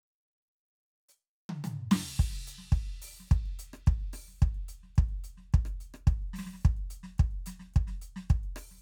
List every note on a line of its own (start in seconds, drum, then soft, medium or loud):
1.09 hi-hat pedal soft
1.49 high tom loud
1.64 hi-hat pedal medium
1.64 high tom loud
1.91 snare loud
1.91 crash loud
2.19 kick loud
2.19 closed hi-hat medium
2.31 snare soft
2.47 closed hi-hat medium
2.58 snare soft
2.72 kick loud
2.72 closed hi-hat soft
2.87 closed hi-hat soft
3.02 open hi-hat loud
3.20 snare soft
3.27 hi-hat pedal soft
3.31 kick loud
3.31 closed hi-hat soft
3.38 snare soft
3.46 closed hi-hat soft
3.59 closed hi-hat medium
3.73 cross-stick medium
3.86 kick loud
3.86 closed hi-hat soft
4.00 closed hi-hat soft
4.13 open hi-hat medium
4.13 cross-stick medium
4.28 snare soft
4.38 kick loud
4.38 closed hi-hat soft
4.38 hi-hat pedal soft
4.55 closed hi-hat soft
4.68 closed hi-hat medium
4.83 snare soft
4.96 kick loud
4.96 closed hi-hat soft
5.09 closed hi-hat soft
5.24 closed hi-hat medium
5.37 snare soft
5.53 kick loud
5.53 closed hi-hat soft
5.65 cross-stick medium
5.65 closed hi-hat soft
5.80 closed hi-hat soft
5.94 cross-stick medium
6.07 kick loud
6.07 closed hi-hat soft
6.22 closed hi-hat soft
6.33 open hi-hat medium
6.33 snare medium
6.39 snare medium
6.42 snare soft
6.46 snare medium
6.53 snare soft
6.61 snare soft
6.61 closed hi-hat soft
6.61 hi-hat pedal soft
6.65 kick loud
6.70 snare soft
6.77 closed hi-hat soft
6.90 closed hi-hat medium
7.03 snare medium
7.18 kick loud
7.18 closed hi-hat soft
7.31 closed hi-hat soft
7.46 closed hi-hat medium
7.46 snare medium
7.59 snare soft
7.74 kick loud
7.74 closed hi-hat soft
7.87 snare soft
7.87 closed hi-hat soft
8.02 closed hi-hat medium
8.16 snare medium
8.30 kick loud
8.30 closed hi-hat soft
8.43 closed hi-hat soft
8.56 open hi-hat medium
8.56 cross-stick medium
8.71 snare soft
8.74 snare soft